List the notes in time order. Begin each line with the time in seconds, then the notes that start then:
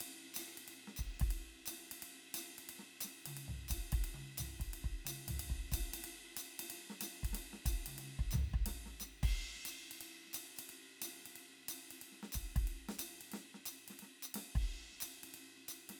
0.01 ride
0.34 hi-hat pedal, ride
0.58 ride
0.68 ride
0.73 snare, hi-hat pedal
0.88 snare
0.97 kick, hi-hat pedal, ride
1.20 kick, ride
1.31 ride
1.56 snare
1.66 hi-hat pedal, ride
1.92 ride
2.03 ride
2.35 hi-hat pedal, ride
2.59 ride
2.69 ride
2.79 snare
3.01 snare, hi-hat pedal, ride
3.26 high tom, ride
3.37 ride
3.48 floor tom
3.69 kick, hi-hat pedal, ride
3.92 kick, ride
4.04 ride
4.14 high tom
4.38 floor tom, hi-hat pedal, ride
4.60 kick, ride
4.74 ride
4.84 kick
5.05 hi-hat pedal, high tom, ride
5.28 floor tom, ride
5.40 ride
5.50 kick
5.72 kick, hi-hat pedal, ride
5.94 ride
6.04 ride
6.37 hi-hat pedal, ride
6.60 ride
6.70 ride
6.90 snare
7.01 snare, hi-hat pedal, ride
7.23 kick, ride
7.33 snare, ride
7.53 snare
7.66 kick, hi-hat pedal, ride
7.86 high tom, ride
7.98 high tom, ride
8.19 kick
8.31 snare, floor tom, hi-hat pedal
8.54 kick
8.66 snare, ride
8.86 snare
9.00 snare, hi-hat pedal
9.23 kick, ride
9.56 snare
9.66 hi-hat pedal, ride
9.91 ride
10.01 ride
10.27 snare
10.31 snare
10.32 snare, hi-hat pedal, ride
10.57 hi-hat pedal, ride
10.70 ride
11.02 hi-hat pedal, ride
11.26 ride
11.36 ride
11.60 snare
11.69 hi-hat pedal, ride
11.90 hi-hat pedal, ride
12.02 ride
12.12 snare
12.23 snare
12.32 kick, hi-hat pedal, ride
12.56 kick, ride
12.67 ride
12.89 snare
12.99 hi-hat pedal, ride
13.21 ride
13.32 snare, ride
13.55 snare
13.66 hi-hat pedal, ride
13.88 snare, ride
13.99 snare, ride
14.23 hi-hat pedal
14.35 snare, ride
14.55 kick, ride
14.67 ride
14.92 snare
15.01 hi-hat pedal, ride
15.24 ride
15.34 ride
15.57 snare
15.61 snare
15.65 snare, hi-hat pedal, ride
15.90 snare, ride